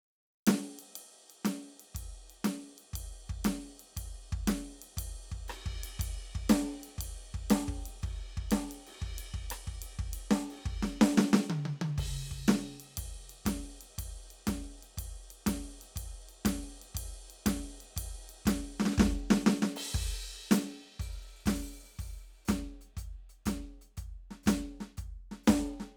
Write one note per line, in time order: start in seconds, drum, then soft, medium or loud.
0.47 snare loud
0.47 ride loud
0.79 ride medium
0.95 ride medium
1.30 ride soft
1.45 snare medium
1.45 ride medium
1.79 ride medium
1.94 kick medium
1.94 ride medium
2.30 ride soft
2.44 snare medium
2.44 ride loud
2.78 ride soft
2.93 kick medium
2.93 ride loud
3.29 kick medium
3.44 snare loud
3.44 ride loud
3.79 ride medium
3.96 kick medium
3.96 ride medium
4.32 kick medium
4.47 snare loud
4.47 ride loud
4.82 ride medium
4.97 kick medium
4.97 ride loud
5.31 kick medium
5.48 cross-stick medium
5.48 ride medium
5.66 kick medium
5.83 ride medium
5.99 kick medium
5.99 ride loud
6.35 kick medium
6.49 snare loud
6.49 ride loud
6.83 ride medium
6.98 kick medium
6.98 ride loud
7.34 kick medium
7.50 snare loud
7.50 ride loud
7.68 kick medium
7.86 ride medium
8.02 kick medium
8.02 ride medium
8.37 kick medium
8.51 snare medium
8.51 ride loud
8.71 ride medium
8.87 ride medium
9.01 kick medium
9.18 ride medium
9.34 kick medium
9.50 cross-stick medium
9.50 ride loud
9.67 kick medium
9.82 ride medium
9.99 kick medium
10.13 ride medium
10.31 snare loud
10.50 ride medium
10.65 kick medium
10.82 snare medium
11.01 snare loud
11.17 snare loud
11.33 snare loud
11.50 high tom loud
11.65 high tom loud
11.81 high tom loud
11.98 kick medium
11.98 crash medium
12.31 kick soft
12.48 snare loud
12.48 ride medium
12.80 ride medium
12.97 kick medium
12.97 ride loud
13.29 ride medium
13.45 kick medium
13.45 snare medium
13.45 ride loud
13.81 ride medium
13.98 kick medium
13.98 ride loud
14.30 ride soft
14.47 kick medium
14.47 snare medium
14.47 ride loud
14.82 ride soft
14.97 kick medium
14.97 ride loud
15.30 ride medium
15.46 kick medium
15.46 snare medium
15.46 ride loud
15.81 ride medium
15.96 kick medium
15.96 ride loud
16.29 ride soft
16.45 kick medium
16.45 snare loud
16.45 ride loud
16.81 ride soft
16.94 kick medium
16.94 ride loud
17.30 ride soft
17.46 kick medium
17.46 snare loud
17.46 ride loud
17.80 ride soft
17.96 kick medium
17.96 ride loud
18.29 ride medium
18.45 kick medium
18.45 snare loud
18.45 ride loud
18.80 snare medium
18.85 snare medium
18.91 snare medium
18.98 kick loud
18.98 snare loud
19.30 snare loud
19.46 snare loud
19.62 snare loud
19.76 crash loud
19.94 kick medium
19.94 crash medium
20.51 open hi-hat loud
20.51 snare loud
20.99 open hi-hat medium
20.99 kick medium
21.32 open hi-hat soft
21.46 open hi-hat loud
21.46 kick medium
21.46 snare loud
21.84 open hi-hat soft
21.99 open hi-hat medium
21.99 kick medium
22.33 open hi-hat soft
22.45 closed hi-hat medium
22.45 kick medium
22.45 snare loud
22.45 hi-hat pedal soft
22.81 closed hi-hat soft
22.97 closed hi-hat medium
22.97 kick medium
23.29 closed hi-hat soft
23.46 closed hi-hat medium
23.46 kick medium
23.46 snare medium
23.81 closed hi-hat soft
23.97 closed hi-hat medium
23.97 kick medium
24.31 snare soft
24.43 closed hi-hat loud
24.43 kick medium
24.43 snare loud
24.43 hi-hat pedal soft
24.80 snare soft
24.97 closed hi-hat medium
24.97 kick medium
25.31 snare soft
25.43 closed hi-hat medium
25.43 snare loud
25.43 hi-hat pedal soft
25.48 kick medium
25.80 snare soft